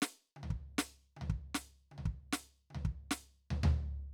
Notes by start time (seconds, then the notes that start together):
0.02 snare
0.36 high tom
0.43 floor tom
0.50 kick
0.78 snare
1.16 high tom
1.21 floor tom
1.30 kick
1.55 snare
1.91 high tom
1.98 floor tom
2.05 kick
2.33 snare
2.70 high tom
2.75 floor tom
2.85 kick
3.11 snare
3.50 floor tom
3.63 floor tom